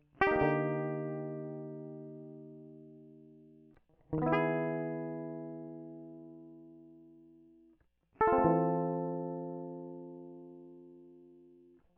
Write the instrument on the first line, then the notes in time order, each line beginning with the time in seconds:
electric guitar
0.22 G4
0.27 D#4
0.32 A#3
0.42 D3
4.14 D#3
4.22 B3
4.26 E4
4.33 G#4
8.21 A4
8.28 F4
8.33 C4
8.45 E3